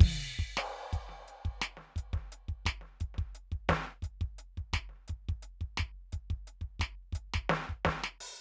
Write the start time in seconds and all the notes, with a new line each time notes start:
0.01 kick, ride, crash
0.39 kick
0.57 snare, crash
0.93 closed hi-hat, kick
1.09 snare
1.28 closed hi-hat
1.45 kick
1.62 closed hi-hat, snare
1.77 snare
1.96 closed hi-hat, kick
2.13 kick, snare
2.18 snare
2.32 closed hi-hat
2.49 kick
2.66 closed hi-hat, kick, snare
2.81 snare
3.00 closed hi-hat, kick
3.14 kick, snare
3.35 closed hi-hat
3.52 kick
3.69 closed hi-hat, kick, snare
3.84 snare
4.02 closed hi-hat, kick
4.21 kick
4.38 closed hi-hat
4.57 kick
4.73 closed hi-hat, kick, snare
4.89 snare
4.96 snare
5.08 closed hi-hat, kick
5.29 kick
5.42 closed hi-hat
5.61 kick
5.77 closed hi-hat, kick, snare
6.12 closed hi-hat, kick
6.30 kick
6.47 closed hi-hat
6.61 kick
6.80 closed hi-hat, kick, snare
7.13 closed hi-hat, kick
7.34 kick, snare
7.50 snare
7.69 kick
7.85 kick, snare
8.04 snare
8.20 open hi-hat